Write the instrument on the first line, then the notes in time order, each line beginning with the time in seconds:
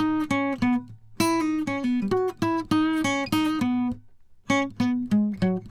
acoustic guitar
0.00 D#4
0.32 C#4
0.63 B3
1.21 E4
1.42 D#4
1.68 C#4
1.84 B3
2.12 F#4
2.43 E4
2.72 D#4
3.06 C#4
3.33 D#4
3.62 B3
4.51 C#4
4.81 B3
5.12 G#3
5.43 F#3